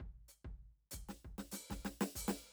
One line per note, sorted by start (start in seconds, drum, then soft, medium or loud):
0.00 kick soft
0.28 hi-hat pedal soft
0.45 kick soft
0.91 kick soft
0.91 hi-hat pedal medium
1.09 snare soft
1.25 kick soft
1.38 snare soft
1.52 snare soft
1.52 hi-hat pedal medium
1.70 kick soft
1.70 snare soft
1.85 snare medium
2.01 snare medium
2.15 kick soft
2.15 hi-hat pedal medium
2.28 snare medium